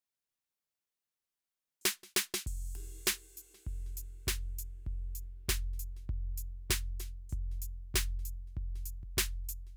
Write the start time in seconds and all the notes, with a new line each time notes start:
1.81 snare, hi-hat pedal
2.03 snare
2.16 snare
2.34 snare
2.46 kick, crash
2.75 snare, floor tom, ride
3.06 snare, hi-hat pedal
3.37 closed hi-hat
3.54 snare
3.67 closed hi-hat, kick
3.86 snare
3.97 closed hi-hat
4.27 kick, snare
4.59 closed hi-hat
4.86 kick
5.15 closed hi-hat
5.49 kick, snare
5.73 snare
5.79 closed hi-hat
5.96 snare
6.06 kick, closed hi-hat
6.38 closed hi-hat
6.70 kick, snare
7.00 closed hi-hat, snare
7.29 kick, hi-hat pedal
7.51 snare
7.62 closed hi-hat
7.94 kick, snare
8.19 snare
8.25 closed hi-hat
8.47 snare
8.54 kick, closed hi-hat
8.75 snare
8.85 closed hi-hat
9.03 kick
9.17 kick, snare
9.44 snare
9.49 closed hi-hat
9.67 snare